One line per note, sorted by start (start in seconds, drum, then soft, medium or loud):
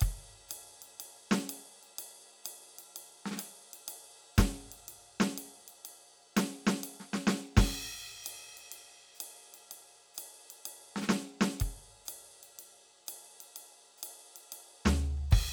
0.01 kick loud
0.01 ride loud
0.49 hi-hat pedal medium
0.49 ride loud
0.82 ride medium
1.00 ride loud
1.31 snare loud
1.37 hi-hat pedal medium
1.49 ride loud
1.83 ride soft
1.99 ride loud
2.45 hi-hat pedal medium
2.45 ride loud
2.79 ride medium
2.96 ride loud
3.26 snare medium
3.31 snare medium
3.36 snare medium
3.36 hi-hat pedal soft
3.36 ride loud
3.73 ride medium
3.88 ride loud
4.36 kick loud
4.36 snare loud
4.36 hi-hat pedal soft
4.36 ride loud
4.72 ride medium
4.88 ride medium
5.20 snare loud
5.38 ride loud
5.68 ride medium
5.85 ride loud
6.37 snare loud
6.37 ride loud
6.67 snare loud
6.84 ride loud
7.00 snare soft
7.14 snare medium
7.27 snare loud
7.57 kick loud
7.57 snare loud
7.57 hi-hat pedal soft
7.57 crash loud
8.24 hi-hat pedal medium
8.24 ride loud
8.57 ride medium
8.72 ride medium
9.15 hi-hat pedal soft
9.21 ride loud
9.54 ride medium
9.71 ride medium
10.15 hi-hat pedal soft
10.15 ride loud
10.50 ride medium
10.66 ride loud
10.96 snare medium
11.01 snare medium
11.01 hi-hat pedal soft
11.08 snare soft
11.08 snare loud
11.41 snare loud
11.60 kick medium
11.60 ride loud
12.06 hi-hat pedal medium
12.06 ride loud
12.43 ride medium
12.59 ride medium
13.07 hi-hat pedal soft
13.07 ride loud
13.41 ride medium
13.56 ride medium
13.98 hi-hat pedal soft
14.03 ride loud
14.36 ride medium
14.52 ride loud
14.85 snare loud
14.85 floor tom loud
15.18 kick soft
15.30 kick loud
15.30 cross-stick soft
15.30 crash loud